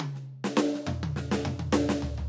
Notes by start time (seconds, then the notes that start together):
0.00 high tom
0.15 snare
0.44 snare
0.57 snare
0.74 snare
0.87 mid tom
1.03 high tom
1.16 snare
1.31 snare
1.45 mid tom
1.59 high tom
1.73 snare
1.89 snare
2.02 floor tom
2.18 floor tom